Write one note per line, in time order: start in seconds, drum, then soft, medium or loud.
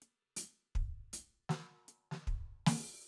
0.01 closed hi-hat soft
0.37 closed hi-hat loud
0.75 kick medium
0.75 closed hi-hat soft
1.13 closed hi-hat loud
1.49 snare medium
1.49 closed hi-hat medium
1.88 closed hi-hat medium
2.11 snare medium
2.27 kick medium
2.27 closed hi-hat soft
2.67 open hi-hat loud
2.67 snare loud